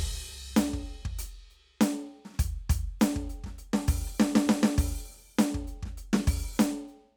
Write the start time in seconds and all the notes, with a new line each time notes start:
0.53 kick
0.57 closed hi-hat, snare
0.73 kick
0.85 closed hi-hat
1.05 kick
1.19 closed hi-hat
1.50 closed hi-hat
1.81 closed hi-hat, snare
2.25 snare
2.31 snare
2.34 snare
2.38 closed hi-hat, kick, snare
2.70 closed hi-hat, kick
3.00 closed hi-hat, snare, hi-hat pedal
3.16 kick
3.29 closed hi-hat
3.44 kick, snare
3.54 snare
3.58 closed hi-hat
3.73 snare
3.88 open hi-hat, kick
4.07 cross-stick
4.19 snare, hi-hat pedal
4.36 snare
4.46 kick, snare
4.63 snare
4.78 open hi-hat, kick
5.29 kick
5.39 open hi-hat, snare, hi-hat pedal
5.54 kick
5.67 closed hi-hat
5.83 kick, snare, crash
5.98 closed hi-hat
6.13 snare
6.27 open hi-hat, kick
6.56 closed hi-hat, snare, hi-hat pedal
6.88 closed hi-hat